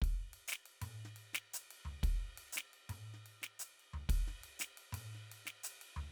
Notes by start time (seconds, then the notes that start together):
0.03 kick, ride
0.33 ride
0.47 snare, hi-hat pedal
0.52 snare
0.65 ride
0.81 mid tom, ride
1.04 snare
1.16 ride
1.33 snare
1.53 hi-hat pedal, ride
1.70 ride
1.85 floor tom
2.03 kick, ride
2.19 snare
2.37 ride
2.47 snare
2.52 snare, hi-hat pedal
2.73 ride
2.89 mid tom, ride
3.13 snare
3.25 ride
3.41 snare
3.59 hi-hat pedal, ride
3.79 ride
3.93 floor tom
4.09 kick, ride
4.27 snare
4.43 ride
4.59 snare, hi-hat pedal
4.77 ride
4.92 mid tom, ride
5.14 snare
5.31 ride
5.45 snare
5.63 hi-hat pedal, ride
5.81 ride
5.96 floor tom